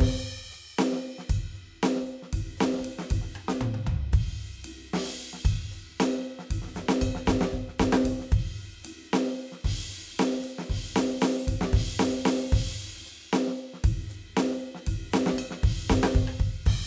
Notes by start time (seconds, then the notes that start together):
0.01 kick, crash
0.52 hi-hat pedal
0.79 snare, ride
0.92 snare
0.96 snare
1.04 ride
1.19 snare
1.30 kick, ride bell
1.55 hi-hat pedal, ride bell
1.83 snare, ride bell
1.96 snare
2.02 kick
2.06 hi-hat pedal, ride
2.23 snare
2.33 kick, ride
2.58 snare, hi-hat pedal, ride
2.73 snare
2.78 kick, snare
2.82 hi-hat pedal, ride
2.99 snare
3.11 kick, ride
3.22 snare
3.35 cross-stick, hi-hat pedal
3.49 snare
3.59 kick, hi-hat pedal, mid tom
3.75 high tom
3.84 kick, floor tom, hi-hat pedal
4.13 kick, hi-hat pedal, ride
4.64 hi-hat pedal, ride
4.94 snare, ride
5.05 snare
5.08 snare
5.11 kick, snare
5.17 hi-hat pedal, ride
5.34 snare
5.45 kick, ride bell
5.71 hi-hat pedal, ride
6.01 snare, ride bell
6.11 snare
6.15 snare
6.18 snare
6.22 snare, hi-hat pedal, ride
6.39 snare
6.51 kick, ride
6.62 snare
6.67 snare
6.73 kick, snare, hi-hat pedal
6.77 snare
6.89 snare
7.02 kick, ride bell
7.16 snare
7.26 kick, snare, hi-hat pedal
7.42 snare
7.54 kick, snare, ride
7.69 snare
7.79 kick, snare, hi-hat pedal
7.93 snare
8.03 kick, hi-hat pedal, ride
8.20 snare
8.32 kick, hi-hat pedal, ride
8.84 hi-hat pedal, ride
9.14 snare, ride
9.27 snare
9.36 hi-hat pedal, ride
9.52 snare
9.65 kick, ride
9.90 hi-hat pedal, ride
10.20 snare, ride
10.32 kick, snare
10.36 snare
10.39 snare, hi-hat pedal
10.42 snare, ride
10.59 snare
10.70 kick, ride
10.92 kick, hi-hat pedal
10.97 closed hi-hat, snare
11.21 open hi-hat, snare
11.46 kick, hi-hat pedal, ride
11.62 snare
11.74 kick, ride
12.00 open hi-hat, snare, hi-hat pedal
12.26 open hi-hat, snare
12.53 kick, ride
13.06 hi-hat pedal
13.33 snare, ride bell
13.48 snare
13.59 ride
13.74 snare
13.84 kick, ride
14.10 hi-hat pedal, ride
14.37 snare, ride
14.51 snare
14.62 ride
14.75 snare
14.87 kick, ride
15.12 snare, hi-hat pedal, ride
15.27 snare
15.34 kick, hi-hat pedal
15.39 ride bell
15.51 snare
15.64 kick, ride
15.88 kick, snare, hi-hat pedal, ride
16.04 snare
16.15 kick, ride
16.28 cross-stick
16.40 kick
16.64 kick, crash
16.67 kick, mid tom